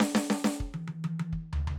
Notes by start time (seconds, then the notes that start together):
0.00 snare, hi-hat pedal
0.15 snare
0.30 snare
0.44 snare, hi-hat pedal
0.60 kick
0.74 high tom
0.88 high tom
1.04 high tom
1.20 high tom
1.33 kick
1.53 floor tom
1.67 floor tom